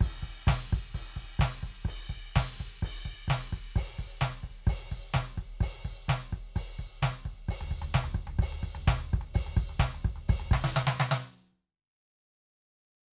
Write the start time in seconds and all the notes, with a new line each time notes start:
0.01 kick, crash
0.23 kick
0.47 kick, snare, crash
0.73 kick
0.94 kick, crash
1.17 kick
1.39 kick, snare, crash
1.63 kick
1.85 kick, crash
2.10 kick
2.36 kick, snare, crash
2.60 kick
2.83 kick, crash
3.06 kick
3.28 kick, snare, crash
3.53 kick
3.76 open hi-hat, kick
3.99 kick
4.21 kick, snare
4.44 kick
4.67 open hi-hat, kick
4.92 kick
5.14 kick, snare
5.38 kick
5.61 open hi-hat, kick
5.85 kick
6.09 kick, snare
6.33 kick
6.56 open hi-hat, kick
6.79 kick
7.03 kick, snare
7.26 kick
7.49 open hi-hat, kick
7.61 floor tom
7.71 kick
7.82 floor tom
7.94 kick, snare
8.04 floor tom
8.15 kick
8.27 floor tom
8.33 kick
8.39 open hi-hat, kick
8.53 floor tom
8.63 kick
8.75 floor tom
8.88 kick, snare
8.99 floor tom
9.14 kick
9.21 floor tom
9.34 open hi-hat, kick
9.47 floor tom
9.57 kick
9.70 floor tom
9.80 kick, snare
9.95 floor tom
10.05 kick
10.16 floor tom
10.29 open hi-hat, kick
10.40 floor tom
10.51 kick, snare
10.64 snare
10.76 snare
10.87 snare
11.00 snare
11.11 snare, hi-hat pedal